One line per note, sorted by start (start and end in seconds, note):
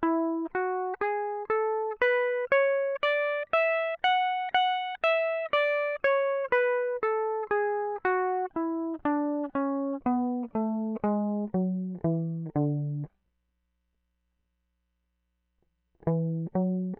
0.03 0.50 E4
0.55 0.98 F#4
1.02 1.47 G#4
1.50 1.97 A4
2.02 2.48 B4
2.52 2.98 C#5
3.03 3.46 D5
3.54 3.97 E5
4.04 4.52 F#5
4.55 4.97 F#5
5.04 5.49 E5
5.53 5.99 D5
6.05 6.48 C#5
6.53 7.00 B4
7.03 7.48 A4
7.51 8.00 G#4
8.05 8.48 F#4
8.57 8.99 E4
9.06 9.50 D4
9.56 9.99 C#4
10.07 10.49 B3
10.56 10.99 A3
11.04 11.49 G#3
11.55 11.99 F#3
12.06 12.53 E3
12.57 13.07 D3
16.08 16.51 E3
16.56 16.98 F#3